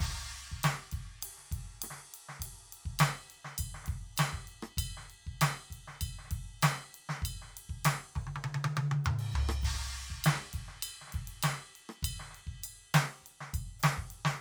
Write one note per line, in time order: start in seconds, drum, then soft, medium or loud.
0.01 kick medium
0.01 hi-hat pedal medium
0.01 crash loud
0.08 kick soft
0.08 cross-stick soft
0.12 kick soft
0.52 kick soft
0.64 snare loud
0.64 hi-hat pedal medium
0.64 ride bell medium
0.92 kick soft
0.92 ride medium
1.00 kick soft
1.22 hi-hat pedal medium
1.22 ride loud
1.38 snare soft
1.41 snare soft
1.52 kick soft
1.52 ride medium
1.59 kick soft
1.82 cross-stick soft
1.82 ride loud
1.91 snare soft
2.14 ride medium
2.29 snare soft
2.40 kick soft
2.40 hi-hat pedal medium
2.40 ride loud
2.73 ride medium
2.86 kick soft
2.99 snare loud
2.99 hi-hat pedal medium
2.99 ride bell loud
3.30 ride soft
3.45 snare soft
3.58 kick soft
3.58 hi-hat pedal soft
3.58 ride bell loud
3.66 kick soft
3.75 snare soft
3.85 kick soft
3.85 snare soft
3.85 ride medium
3.95 kick soft
4.17 snare loud
4.17 hi-hat pedal medium
4.17 ride bell loud
4.32 kick soft
4.32 snare soft
4.48 hi-hat pedal soft
4.48 ride soft
4.63 cross-stick medium
4.78 kick medium
4.78 hi-hat pedal soft
4.78 ride bell loud
4.85 kick soft
4.97 snare soft
5.10 ride soft
5.27 kick soft
5.42 snare loud
5.42 hi-hat pedal medium
5.42 ride bell loud
5.71 kick soft
5.71 ride medium
5.88 snare soft
6.01 kick soft
6.01 ride bell loud
6.08 kick soft
6.19 snare soft
6.25 snare soft
6.31 kick soft
6.31 ride medium
6.38 kick soft
6.41 kick soft
6.62 snare loud
6.62 hi-hat pedal medium
6.62 ride bell loud
6.73 snare soft
6.95 ride medium
7.09 snare medium
7.22 kick soft
7.22 hi-hat pedal soft
7.22 ride bell loud
7.29 kick soft
7.42 snare soft
7.50 snare soft
7.57 ride medium
7.70 kick soft
7.75 kick soft
7.85 snare loud
7.85 hi-hat pedal medium
7.85 ride bell loud
8.16 kick soft
8.16 high tom medium
8.21 kick soft
8.21 hi-hat pedal soft
8.27 high tom medium
8.36 high tom medium
8.44 high tom loud
8.55 high tom medium
8.65 high tom loud
8.76 hi-hat pedal soft
8.76 high tom loud
8.92 high tom loud
9.04 hi-hat pedal medium
9.04 mid tom loud
9.19 ride medium
9.32 kick soft
9.32 floor tom loud
9.32 hi-hat pedal soft
9.49 cross-stick medium
9.62 kick soft
9.62 hi-hat pedal medium
9.62 crash loud
9.74 cross-stick soft
10.11 kick soft
10.24 snare loud
10.24 hi-hat pedal medium
10.24 ride bell loud
10.54 kick soft
10.54 ride medium
10.60 kick soft
10.68 snare soft
10.83 hi-hat pedal soft
10.83 ride bell loud
11.02 snare soft
11.08 snare soft
11.11 kick soft
11.11 snare soft
11.11 ride medium
11.21 kick soft
11.28 ride medium
11.43 snare medium
11.43 hi-hat pedal medium
11.43 ride bell loud
11.50 snare soft
11.76 ride soft
11.89 cross-stick medium
12.03 kick soft
12.03 hi-hat pedal soft
12.03 ride bell loud
12.10 kick soft
12.20 snare soft
12.31 snare soft
12.31 ride soft
12.47 kick soft
12.63 hi-hat pedal medium
12.63 ride bell medium
12.95 snare loud
12.95 ride bell medium
13.22 kick soft
13.27 ride medium
13.41 snare soft
13.54 kick soft
13.54 ride bell medium
13.62 kick soft
13.80 hi-hat pedal medium
13.80 ride loud
13.84 snare loud
13.94 kick soft
13.94 snare soft
14.11 ride medium
14.25 snare medium